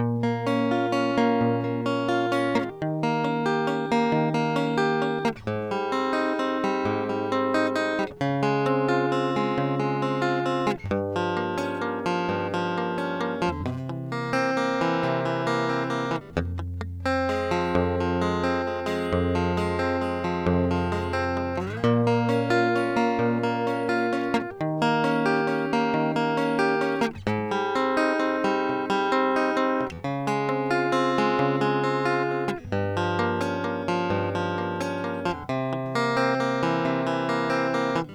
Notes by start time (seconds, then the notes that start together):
0.01 A#2 A#3
0.25 A#3
0.48 C#4
0.73 F4
0.94 C#4
1.19 A#3
1.43 A#2
1.53 A#3
1.87 C#4
2.10 F4
2.33 C#4
2.65 D#3
2.71 G4
2.83 D#3
3.04 A#3
3.26 C#4
3.47 G4
3.69 C#4
3.93 A#3
4.13 D#3
4.36 A#3
4.57 C#4
4.79 G4
5.03 C#4
5.49 G#2
5.62 D#4
5.72 G3
5.93 C4
6.14 D#4
6.41 C4
6.65 G3
6.87 G#2
7.11 G3
7.33 C4
7.56 D#4
7.77 C4 D#4
8.22 C#3
8.44 G#3
8.67 C4
8.90 F4
9.13 C4
9.38 G#3
9.59 C#3
9.81 G#3
10.04 C4
10.23 F4
10.47 C4
10.87 G2
10.95 G2
11.17 F3
11.38 A#3
11.59 C#4
11.83 A#3
12.07 F3
12.30 G2
12.55 F3
12.79 A#3
12.99 C#4
13.22 A#3
13.67 C3
13.91 E3
14.13 A#3
14.34 C4
14.58 A#3
14.82 E3
15.05 C3
15.27 E3
15.48 A#3
15.71 C4
15.91 A#3
16.38 F2
17.07 C4
17.30 G#3
17.53 F3
17.76 F2
18.02 F3
18.23 G#3
18.45 C4
18.69 G#3
18.88 G#3
19.14 F2
19.36 F3
19.59 G#3
19.80 C4
20.03 G#3
20.26 F3
20.48 F2 C3
20.72 F3
20.93 G#3
21.14 C4
21.38 G#3
21.73 F3
21.85 A#2
22.08 A#3
22.30 C#4
22.52 F4
22.77 C#4
22.98 A#3
23.20 A#2
23.45 A#3
23.68 C#4
23.90 F4
24.14 C#4
24.52 G4
24.62 D#3
24.83 A#3
25.05 C#4
25.27 G4
25.49 C#4
25.74 A#3
25.95 D#3
26.17 A#3
26.39 C#4
26.60 G4
26.82 C#4
27.28 G#2
27.53 G3
27.77 C4
27.98 D#4
28.21 C4
28.45 G3
28.91 G3
29.13 C4
29.38 D#4
29.58 C4
30.05 C#3
30.29 G#3
30.50 C4
30.72 F4
30.94 C4
31.20 G#3
31.40 C#3
31.63 G#3
31.85 C4
32.07 F4
32.33 C4
32.74 G2
32.98 F3
33.20 A#3
33.42 C#4
33.65 A#3
33.90 F3
34.12 G2
34.36 F3
34.59 A#3
34.82 C#4
35.05 A#3
35.50 C3
35.88 E3
35.97 A#3
36.18 C4
36.41 A#3
36.64 E3
36.86 C3
37.08 E3
37.30 A#3
37.51 C4
37.76 A#3